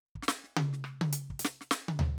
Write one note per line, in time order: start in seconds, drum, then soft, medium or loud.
0.15 kick soft
0.22 snare medium
0.28 snare loud
0.44 snare soft
0.57 high tom loud
0.73 snare soft
0.84 cross-stick medium
1.01 high tom loud
1.13 closed hi-hat loud
1.30 kick soft
1.39 closed hi-hat loud
1.45 snare loud
1.61 snare soft
1.71 snare loud
1.88 high tom loud
1.99 floor tom loud